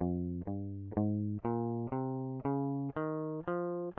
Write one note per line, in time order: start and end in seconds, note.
0.04 0.47 F2
0.50 0.97 G2
0.99 1.42 G#2
1.47 1.91 A#2
1.94 2.45 C3
2.47 2.94 C#3
2.98 3.45 D#3
3.49 3.93 F3